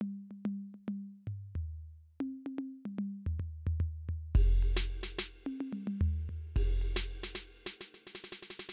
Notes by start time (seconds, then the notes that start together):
0.00 mid tom
0.31 mid tom
0.45 mid tom
0.74 mid tom
0.88 mid tom
1.27 floor tom
1.55 floor tom
2.20 high tom
2.46 high tom
2.58 high tom
2.85 mid tom
2.98 mid tom
3.26 floor tom
3.40 floor tom
3.67 floor tom
3.80 floor tom
4.09 floor tom
4.35 kick, ride
4.62 ride
4.76 snare
5.03 snare
5.19 snare
5.46 high tom
5.60 high tom
5.72 mid tom
5.87 mid tom
6.01 floor tom
6.29 floor tom
6.56 kick, ride
6.81 ride
6.96 snare
7.23 snare
7.35 snare
7.66 snare
7.81 snare
7.94 snare
8.07 snare
8.15 snare
8.24 snare
8.32 snare
8.42 snare
8.50 snare
8.59 snare
8.69 snare